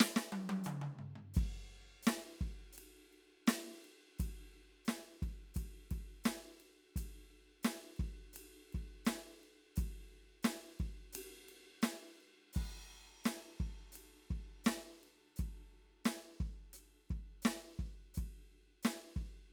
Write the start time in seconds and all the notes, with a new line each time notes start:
0.01 snare
0.17 snare
0.33 high tom
0.50 high tom
0.65 hi-hat pedal, mid tom
0.82 mid tom
0.99 floor tom
1.16 floor tom
1.35 kick, hi-hat pedal, ride
2.03 hi-hat pedal
2.08 snare, ride
2.42 kick, ride
2.73 hi-hat pedal
2.79 ride
3.14 ride
3.48 snare, hi-hat pedal, ride
3.85 ride
4.19 kick, hi-hat pedal, ride
4.54 ride
4.86 snare, hi-hat pedal
4.90 ride
5.23 kick, ride
5.55 kick, hi-hat pedal, ride
5.92 kick, ride
6.25 snare, hi-hat pedal, ride
6.61 ride
6.97 kick, hi-hat pedal, ride
7.64 snare, hi-hat pedal, ride
7.97 kick, ride
8.34 hi-hat pedal, ride
8.73 kick, ride
9.06 snare, hi-hat pedal, ride
9.16 snare
9.44 ride
9.76 kick, hi-hat pedal, ride
10.10 ride
10.43 snare, hi-hat pedal, ride
10.80 kick, ride
11.13 hi-hat pedal, ride
11.49 ride
11.83 snare, hi-hat pedal, ride
12.22 ride
12.54 kick, hi-hat pedal, crash
13.25 snare, hi-hat pedal, ride
13.61 kick
13.93 hi-hat pedal, ride
14.31 kick
14.65 snare, hi-hat pedal, ride
15.04 ride
15.37 kick, hi-hat pedal, ride
16.05 snare, hi-hat pedal, ride
16.41 kick
16.74 hi-hat pedal, ride
17.10 kick, ride
17.43 snare, hi-hat pedal, ride
17.80 kick
18.15 kick, hi-hat pedal, ride
18.83 snare, hi-hat pedal, ride
19.17 kick